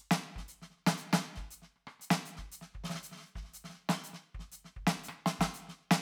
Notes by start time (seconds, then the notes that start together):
0.01 cross-stick
0.11 snare
0.17 cross-stick
0.22 cross-stick
0.36 kick, snare
0.48 snare, hi-hat pedal
0.62 snare
0.70 snare
0.76 snare
0.87 snare
0.92 snare
0.98 snare, hi-hat pedal
1.13 snare
1.19 snare
1.35 kick, snare
1.50 snare, hi-hat pedal
1.62 snare
1.76 cross-stick
1.87 cross-stick
1.99 cross-stick, snare, hi-hat pedal
2.11 snare
2.24 snare, hi-hat pedal
2.36 kick, snare
2.50 snare, hi-hat pedal
2.61 snare
2.72 kick, cross-stick, snare
2.84 snare
2.90 snare
2.95 snare
3.01 cross-stick, hi-hat pedal
3.12 snare
3.15 snare
3.17 snare
3.20 snare
3.24 snare, hi-hat pedal
3.36 kick, snare
3.40 snare
3.43 snare
3.47 snare
3.52 snare, hi-hat pedal, crash
3.64 snare
3.69 snare
3.73 snare
3.89 cross-stick, snare
4.00 snare
4.01 snare, hi-hat pedal
4.13 snare
4.28 snare
4.35 kick
4.39 snare
4.52 snare, hi-hat pedal
4.65 snare
4.76 kick, cross-stick
4.87 snare
4.97 snare
5.00 snare, hi-hat pedal
5.09 cross-stick
5.18 cross-stick
5.26 snare
5.40 kick, snare
5.54 cross-stick, hi-hat pedal
5.69 snare
5.80 snare
5.91 snare